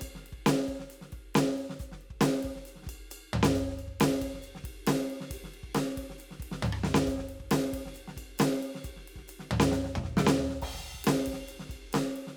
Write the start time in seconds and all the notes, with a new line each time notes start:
0.01 kick, hi-hat pedal, ride bell
0.08 kick
0.15 snare
0.26 ride
0.32 kick
0.38 kick
0.46 snare, hi-hat pedal, ride bell
0.54 snare
0.68 kick, ride bell
0.79 snare
0.90 hi-hat pedal, ride
1.01 snare
1.12 kick, ride
1.34 snare, hi-hat pedal, ride, floor tom
1.58 ride bell
1.69 snare
1.79 kick, snare, hi-hat pedal, ride
1.86 kick
1.92 snare
2.01 ride
2.10 kick
2.16 kick
2.21 snare, hi-hat pedal, ride
2.43 kick, ride
2.50 kick
2.55 snare
2.65 hi-hat pedal, ride
2.75 snare
2.82 snare
2.86 kick, ride bell
2.93 kick
3.10 hi-hat pedal, ride bell
3.33 floor tom
3.43 snare
3.55 kick, hi-hat pedal, ride bell
3.66 kick, snare
3.75 snare, ride bell
3.88 kick
3.93 kick
4.00 snare, hi-hat pedal, ride
4.11 snare
4.21 kick, ride bell
4.28 kick
4.34 snare
4.42 hi-hat pedal, ride
4.55 snare
4.64 kick, ride
4.71 kick
4.87 snare, hi-hat pedal, ride
5.10 ride
5.20 snare
5.30 kick, hi-hat pedal, ride
5.37 kick
5.44 snare
5.54 ride
5.63 kick
5.69 kick
5.75 snare, hi-hat pedal, ride
5.97 kick, ride
6.03 kick
6.10 snare
6.18 hi-hat pedal, ride
6.31 snare
6.39 kick, ride
6.46 kick
6.51 snare
6.62 hi-hat pedal, floor tom
6.72 cross-stick
6.83 snare
6.94 snare
7.07 kick, hi-hat pedal, ride bell
7.14 kick
7.18 kick, snare
7.29 ride
7.40 kick
7.45 kick
7.51 snare, hi-hat pedal, ride
7.73 kick, ride
7.79 kick
7.86 snare
7.94 hi-hat pedal, ride
8.08 snare
8.17 kick, ride bell
8.22 kick
8.38 snare, hi-hat pedal, ride
8.63 ride
8.75 snare
8.84 kick, hi-hat pedal, ride
8.91 kick
8.96 snare
9.08 ride
9.15 kick, snare
9.21 kick
9.28 hi-hat pedal, ride
9.39 snare
9.51 floor tom
9.60 snare
9.72 snare, hi-hat pedal
9.84 snare
9.95 kick, mid tom
10.03 kick, snare
10.17 snare, hi-hat pedal
10.27 snare
10.34 snare, floor tom
10.49 snare
10.61 kick, hi-hat pedal, crash
10.69 kick, snare
10.74 kick
10.79 snare
10.94 kick
11.04 snare, hi-hat pedal, ride
11.26 kick, ride
11.33 kick, snare
11.47 hi-hat pedal, ride
11.59 snare
11.69 kick, ride bell
11.76 kick
11.92 snare, hi-hat pedal, ride
12.16 ride
12.27 snare